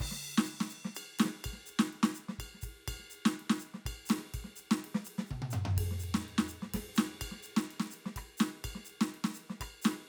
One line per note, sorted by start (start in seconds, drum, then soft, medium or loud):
0.01 kick medium
0.01 crash loud
0.08 kick soft
0.08 snare soft
0.19 hi-hat pedal soft
0.26 ride soft
0.39 snare loud
0.45 hi-hat pedal medium
0.61 snare medium
0.70 hi-hat pedal medium
0.70 ride soft
0.86 snare medium
0.96 hi-hat pedal medium
0.96 ride bell loud
1.20 snare loud
1.20 ride loud
1.26 snare medium
1.45 kick soft
1.45 ride bell loud
1.54 snare soft
1.67 hi-hat pedal medium
1.67 ride soft
1.80 snare loud
1.89 hi-hat pedal soft
1.94 ride soft
2.04 snare loud
2.15 hi-hat pedal medium
2.15 ride soft
2.29 snare medium
2.40 kick soft
2.40 ride bell loud
2.55 snare soft
2.62 kick soft
2.62 hi-hat pedal medium
2.62 ride medium
2.89 kick soft
2.89 ride bell loud
2.95 kick soft
2.97 kick soft
2.97 snare soft
3.11 hi-hat pedal medium
3.15 ride soft
3.26 snare loud
3.40 ride soft
3.50 snare loud
3.60 hi-hat pedal medium
3.60 ride soft
3.75 snare soft
3.86 kick soft
3.86 ride bell loud
3.92 kick soft
3.95 kick soft
4.06 hi-hat pedal medium
4.06 ride loud
4.11 snare loud
4.19 snare soft
4.35 kick soft
4.35 ride bell medium
4.41 kick soft
4.45 snare soft
4.57 hi-hat pedal medium
4.57 ride soft
4.72 snare loud
4.85 ride medium
4.95 snare medium
5.05 hi-hat pedal medium
5.05 ride medium
5.19 snare medium
5.27 hi-hat pedal soft
5.32 kick soft
5.32 mid tom medium
5.37 kick soft
5.43 mid tom loud
5.51 floor tom loud
5.51 hi-hat pedal medium
5.66 floor tom loud
5.78 kick soft
5.78 ride loud
5.83 kick soft
5.86 kick soft
5.92 snare soft
6.00 hi-hat pedal medium
6.05 ride medium
6.15 snare loud
6.29 ride soft
6.39 snare loud
6.49 hi-hat pedal medium
6.49 ride medium
6.63 snare medium
6.75 kick soft
6.75 snare medium
6.75 ride loud
6.96 snare loud
6.96 hi-hat pedal medium
6.96 ride medium
7.22 kick soft
7.22 ride bell loud
7.32 snare soft
7.43 hi-hat pedal medium
7.43 ride medium
7.57 snare loud
7.71 ride bell medium
7.81 snare medium
7.91 hi-hat pedal medium
7.91 ride medium
8.07 snare medium
8.17 kick soft
8.17 cross-stick medium
8.17 ride bell medium
8.38 snare loud
8.38 hi-hat pedal medium
8.38 ride medium
8.65 kick soft
8.65 ride bell loud
8.73 kick soft
8.73 snare soft
8.86 hi-hat pedal medium
8.91 ride soft
9.02 snare loud
9.15 ride soft
9.25 snare loud
9.35 hi-hat pedal medium
9.35 ride medium
9.51 snare medium
9.61 kick soft
9.61 cross-stick medium
9.61 ride bell loud
9.83 snare loud
9.83 hi-hat pedal medium
9.83 ride medium
9.92 cross-stick soft